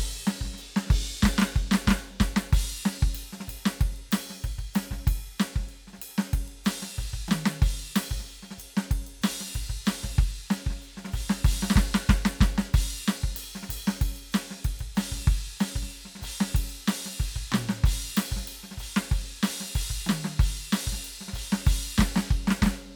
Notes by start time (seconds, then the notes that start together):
0.26 snare, hi-hat pedal, ride
0.41 kick, snare
0.54 snare
0.58 hi-hat pedal, ride
0.76 snare
0.87 kick, snare
0.91 ride
1.23 kick, snare, hi-hat pedal
1.26 snare
1.38 snare
1.42 snare
1.56 kick, hi-hat pedal
1.71 snare
1.74 snare
1.88 kick, snare
1.91 snare
2.20 kick, snare
2.37 snare
2.53 kick, crash
2.86 snare, hi-hat pedal
3.03 kick
3.09 snare
3.15 hi-hat pedal, crash
3.33 snare
3.41 snare
3.47 kick, hi-hat pedal, crash
3.66 snare
3.81 kick, crash
3.96 crash
4.09 kick, snare, hi-hat pedal, crash
4.30 snare
4.44 kick, crash
4.59 kick, crash
4.74 snare, hi-hat pedal, crash
4.91 kick, snare
5.07 kick, crash
5.39 snare, hi-hat pedal, crash
5.56 kick, snare
5.69 hi-hat pedal, crash
5.88 snare
5.93 snare
5.99 kick, hi-hat pedal, crash
6.18 snare
6.33 kick, crash
6.48 crash
6.63 kick, snare, hi-hat pedal, crash
6.82 snare
6.98 kick, crash
7.14 kick
7.28 snare, hi-hat pedal, high tom
7.46 snare
7.62 kick, crash
7.93 kick, snare, hi-hat pedal, crash
8.11 kick
8.20 snare
8.43 snare
8.51 snare
8.58 kick, hi-hat pedal, crash
8.77 snare
8.91 kick, crash
9.07 crash
9.22 kick, snare, hi-hat pedal, crash
9.41 snare
9.55 kick, crash
9.70 kick, crash
9.85 snare, hi-hat pedal, crash
10.03 kick, snare
10.18 kick, crash
10.50 snare, hi-hat pedal, crash
10.67 kick, snare
10.82 hi-hat pedal, crash
10.97 snare
11.05 snare
11.08 snare
11.12 kick, hi-hat pedal, crash
11.30 snare
11.45 kick, snare, hi-hat pedal, crash
11.52 snare
11.56 snare
11.63 snare
11.70 snare
11.76 kick, snare, hi-hat pedal
11.95 snare
12.08 kick, snare, hi-hat pedal
12.25 snare
12.41 kick, snare, hi-hat pedal
12.58 snare
12.74 kick, hi-hat pedal, crash
13.07 snare, hi-hat pedal
13.24 kick
13.37 hi-hat pedal, crash
13.55 snare
13.63 snare
13.70 kick, hi-hat pedal, crash
13.88 snare
14.01 kick, crash
14.16 crash
14.28 kick
14.32 snare, hi-hat pedal, crash
14.51 snare
14.65 kick, crash
14.80 kick, crash
14.95 snare, hi-hat pedal, crash
15.12 kick, snare
15.28 kick, crash
15.56 kick
15.60 snare, hi-hat pedal, crash
15.76 kick
15.83 snare
15.90 hi-hat pedal, crash
16.05 snare
16.15 snare
16.19 kick, snare, hi-hat pedal
16.24 crash
16.41 snare
16.55 kick, crash
16.70 crash
16.87 snare, hi-hat pedal, crash
17.06 snare
17.19 kick, crash
17.36 kick
17.52 snare, hi-hat pedal, mid tom
17.69 snare
17.84 kick, crash
18.17 snare, hi-hat pedal, crash
18.32 kick
18.36 snare
18.48 crash
18.64 snare
18.71 snare
18.78 kick, hi-hat pedal, crash
18.97 snare
19.12 kick, crash
19.26 crash
19.40 kick, snare, hi-hat pedal, crash
19.61 snare
19.75 kick, crash
19.90 kick
20.07 snare, hi-hat pedal, high tom
20.25 snare
20.40 kick, crash
20.72 snare, hi-hat pedal, crash
20.87 kick
20.93 snare
21.04 hi-hat pedal, crash
21.21 snare
21.28 snare
21.34 kick, hi-hat pedal, crash
21.52 snare
21.66 kick, hi-hat pedal, crash
21.98 kick, snare
22.01 snare
22.16 snare
22.18 snare
22.31 kick, snare, hi-hat pedal
22.48 snare
22.51 snare
22.62 kick, snare, hi-hat pedal
22.66 snare